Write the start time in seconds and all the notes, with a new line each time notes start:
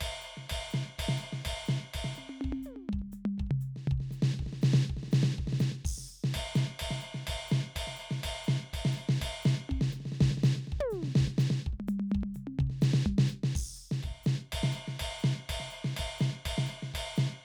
0.01 kick, ride bell
0.21 hi-hat pedal, ride
0.37 snare
0.50 kick, ride bell
0.57 kick
0.70 snare, hi-hat pedal
0.99 kick, ride bell
1.09 snare
1.17 hi-hat pedal, ride
1.33 snare
1.45 kick, ride
1.52 kick
1.65 snare, hi-hat pedal
1.94 kick, ride bell
2.01 kick
2.05 snare
2.15 hi-hat pedal, high tom
2.30 high tom
2.41 kick, high tom
2.51 kick, high tom
2.63 hi-hat pedal, high tom
2.77 high tom
2.89 kick, mid tom
2.99 kick, mid tom
3.12 hi-hat pedal, mid tom
3.26 mid tom
3.38 kick, floor tom
3.47 kick
3.51 floor tom
3.61 hi-hat pedal
3.77 snare
3.88 kick, floor tom
3.98 kick, snare
4.11 snare, hi-hat pedal
4.23 snare
4.34 snare
4.40 kick, snare
4.45 kick, snare
4.53 snare
4.62 snare, hi-hat pedal
4.74 snare
4.85 snare
4.90 kick, snare
4.97 snare
5.03 snare
5.08 snare, hi-hat pedal
5.13 snare
5.23 snare
5.34 snare
5.39 kick, snare
5.45 kick, snare
5.53 snare
5.60 snare, hi-hat pedal
5.72 snare
5.85 kick, crash
5.91 kick
5.97 kick, snare
6.08 hi-hat pedal
6.24 snare
6.34 kick, ride bell
6.41 kick
6.55 snare, hi-hat pedal
6.80 kick, ride bell
6.87 kick, snare
7.01 hi-hat pedal, ride
7.15 snare
7.27 kick, ride bell
7.34 kick
7.48 hi-hat pedal
7.52 snare
7.76 kick, ride bell
7.88 snare
7.96 hi-hat pedal, ride
8.11 snare
8.24 kick, ride bell
8.44 hi-hat pedal
8.49 snare
8.73 kick, ride bell
8.79 kick
8.85 snare
8.93 hi-hat pedal
8.98 ride
9.09 snare
9.22 kick, ride bell
9.28 kick
9.42 snare, hi-hat pedal
9.70 kick, high tom
9.77 kick
9.81 kick, snare
9.92 snare, hi-hat pedal
10.01 snare
10.06 snare
10.12 snare
10.21 kick, snare
10.31 snare
10.38 snare
10.43 snare, hi-hat pedal
10.56 snare
10.68 snare
10.72 kick
10.79 kick, high tom
10.91 snare, hi-hat pedal
11.03 snare
11.08 snare
11.16 snare
11.20 kick
11.27 kick, snare
11.39 snare, hi-hat pedal
11.51 snare
11.67 kick
11.73 kick, mid tom
11.80 mid tom
11.88 hi-hat pedal, mid tom
12.00 mid tom
12.09 hi-hat pedal, mid tom
12.15 kick
12.21 kick, mid tom
12.34 floor tom, hi-hat pedal
12.47 high tom
12.59 kick, floor tom
12.67 kick, snare
12.82 snare, hi-hat pedal
12.94 snare
13.06 kick, mid tom
13.12 kick
13.19 snare
13.29 hi-hat pedal
13.44 snare
13.55 kick, crash
13.76 hi-hat pedal
13.92 snare
14.03 kick, ride, floor tom
14.10 kick
14.23 snare, hi-hat pedal
14.53 kick, ride bell
14.60 kick, snare
14.72 hi-hat pedal, ride
14.88 snare
15.00 kick, ride bell
15.07 kick
15.19 hi-hat pedal
15.24 snare
15.49 kick, ride bell
15.56 kick
15.60 snare
15.70 hi-hat pedal, ride
15.85 snare
15.97 kick, ride bell
16.05 kick
16.18 snare, hi-hat pedal
16.46 kick, ride bell
16.52 kick
16.58 snare
16.66 hi-hat pedal, ride
16.83 snare
16.94 kick, ride bell
17.00 kick
17.16 snare, hi-hat pedal